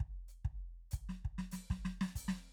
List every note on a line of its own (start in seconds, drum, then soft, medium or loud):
0.00 kick soft
0.28 hi-hat pedal soft
0.45 kick soft
0.91 kick soft
0.91 hi-hat pedal medium
1.09 snare soft
1.25 kick soft
1.38 snare soft
1.52 snare soft
1.52 hi-hat pedal medium
1.70 kick soft
1.70 snare soft
1.85 snare medium
2.01 snare medium
2.16 kick soft
2.16 hi-hat pedal medium
2.28 snare medium